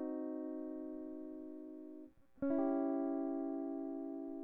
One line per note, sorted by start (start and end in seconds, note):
2.43 4.44 C#4
2.51 4.44 E4
2.60 4.44 G4